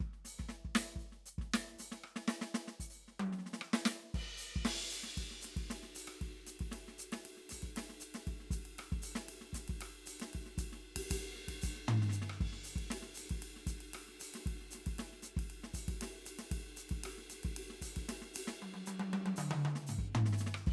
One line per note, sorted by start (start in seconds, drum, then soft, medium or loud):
0.01 kick soft
0.01 snare soft
0.14 snare soft
0.25 snare soft
0.25 hi-hat pedal medium
0.39 kick soft
0.39 snare soft
0.49 snare soft
0.65 kick soft
0.75 snare loud
0.75 hi-hat pedal medium
0.96 kick soft
0.96 hi-hat pedal soft
1.13 snare soft
1.26 hi-hat pedal medium
1.39 kick soft
1.39 snare soft
1.52 snare loud
1.52 hi-hat pedal soft
1.68 snare soft
1.76 kick soft
1.76 hi-hat pedal medium
1.80 snare soft
1.92 snare soft
2.04 cross-stick medium
2.16 snare medium
2.28 snare medium
2.42 snare medium
2.55 snare medium
2.68 snare soft
2.80 open hi-hat medium
2.80 kick soft
2.91 hi-hat pedal medium
2.96 snare soft
3.09 snare soft
3.20 high tom loud
3.33 snare soft
3.39 snare soft
3.47 snare soft
3.54 snare medium
3.62 cross-stick medium
3.74 snare loud
3.86 snare loud
4.15 kick soft
4.15 crash medium
4.38 hi-hat pedal medium
4.56 kick soft
4.63 snare medium
4.63 hi-hat pedal soft
4.63 ride loud
4.81 snare soft
4.91 hi-hat pedal loud
4.91 ride medium
5.04 snare soft
5.04 ride medium
5.18 kick soft
5.18 ride medium
5.32 snare soft
5.42 snare soft
5.42 hi-hat pedal loud
5.42 ride medium
5.57 kick soft
5.57 ride medium
5.71 snare medium
5.71 ride medium
5.84 snare soft
5.95 hi-hat pedal loud
5.95 ride medium
6.08 cross-stick medium
6.08 ride medium
6.22 kick soft
6.22 ride soft
6.34 snare soft
6.47 snare soft
6.47 hi-hat pedal loud
6.47 ride medium
6.60 kick soft
6.60 ride medium
6.72 snare soft
6.72 ride medium
6.89 snare soft
6.99 hi-hat pedal loud
6.99 ride medium
7.13 snare medium
7.13 ride medium
7.26 ride medium
7.38 snare soft
7.50 kick soft
7.50 snare soft
7.50 hi-hat pedal loud
7.50 ride medium
7.63 kick soft
7.63 ride medium
7.74 snare medium
7.74 hi-hat pedal soft
7.74 ride medium
7.90 snare soft
8.01 hi-hat pedal loud
8.01 ride medium
8.15 snare soft
8.15 ride medium
8.28 kick soft
8.28 ride soft
8.41 snare soft
8.51 kick soft
8.51 hi-hat pedal medium
8.51 ride medium
8.66 ride medium
8.79 cross-stick medium
8.79 ride medium
8.93 kick soft
9.03 hi-hat pedal loud
9.03 ride medium
9.16 snare medium
9.16 ride medium
9.29 ride medium
9.42 snare soft
9.54 kick soft
9.54 snare soft
9.54 hi-hat pedal loud
9.54 ride medium
9.68 kick soft
9.68 ride medium
9.81 cross-stick medium
9.81 ride medium
10.06 hi-hat pedal medium
10.06 ride medium
10.20 snare medium
10.20 ride medium
10.34 kick soft
10.34 ride medium
10.47 snare soft
10.58 kick soft
10.58 hi-hat pedal loud
10.58 ride medium
10.73 snare soft
10.89 snare soft
10.97 kick soft
10.97 ride loud
11.10 kick soft
11.10 hi-hat pedal medium
11.10 ride loud
11.36 snare soft
11.49 kick soft
11.49 ride medium
11.62 kick soft
11.62 hi-hat pedal loud
11.62 ride medium
11.76 snare soft
11.87 floor tom loud
11.87 hi-hat pedal soft
12.02 snare soft
12.10 snare soft
12.10 hi-hat pedal loud
12.16 snare soft
12.22 snare soft
12.30 cross-stick medium
12.38 kick medium
12.38 hi-hat pedal soft
12.42 ride medium
12.53 snare soft
12.64 hi-hat pedal medium
12.64 ride medium
12.76 kick soft
12.76 ride medium
12.89 snare medium
12.89 hi-hat pedal soft
12.89 ride medium
13.03 snare soft
13.15 hi-hat pedal loud
13.15 ride medium
13.20 snare soft
13.30 kick soft
13.30 ride medium
13.41 hi-hat pedal soft
13.41 ride medium
13.57 snare soft
13.67 kick soft
13.67 hi-hat pedal medium
13.67 ride medium
13.81 ride medium
13.94 cross-stick medium
13.94 ride medium
14.09 snare soft
14.20 hi-hat pedal loud
14.20 ride medium
14.35 snare soft
14.35 ride medium
14.47 kick soft
14.47 ride medium
14.61 snare soft
14.71 snare soft
14.71 hi-hat pedal loud
14.71 ride medium
14.87 kick soft
14.87 ride medium
14.99 snare medium
14.99 ride medium
15.13 snare soft
15.23 snare soft
15.23 hi-hat pedal loud
15.37 kick medium
15.37 ride medium
15.51 ride medium
15.64 snare soft
15.74 kick soft
15.74 hi-hat pedal medium
15.74 ride medium
15.89 kick soft
15.89 ride medium
16.02 snare medium
16.02 ride loud
16.14 snare soft
16.26 hi-hat pedal medium
16.26 ride medium
16.39 snare soft
16.39 ride medium
16.52 kick soft
16.52 ride medium
16.67 snare soft
16.77 snare soft
16.77 hi-hat pedal medium
16.77 ride medium
16.90 kick soft
16.90 ride medium
17.04 cross-stick medium
17.04 ride loud
17.18 snare soft
17.30 snare soft
17.30 hi-hat pedal medium
17.30 ride medium
17.44 kick soft
17.44 ride medium
17.57 ride medium
17.70 snare soft
17.82 kick soft
17.82 hi-hat pedal loud
17.82 ride medium
17.97 kick soft
17.97 ride medium
18.09 snare medium
18.09 ride medium
18.22 snare soft
18.34 hi-hat pedal loud
18.34 ride loud
18.48 snare medium
18.63 high tom medium
18.74 high tom medium
18.87 hi-hat pedal loud
18.87 high tom medium
19.00 high tom loud
19.14 high tom loud
19.26 high tom loud
19.37 hi-hat pedal loud
19.37 mid tom medium
19.51 mid tom loud
19.66 mid tom medium
19.76 snare soft
19.87 floor tom medium
19.87 hi-hat pedal medium
19.99 kick soft
20.12 floor tom loud
20.12 hi-hat pedal soft
20.26 snare soft
20.33 snare soft
20.38 snare soft
20.38 hi-hat pedal medium
20.47 snare medium
20.55 cross-stick medium
20.67 kick medium
20.67 crash medium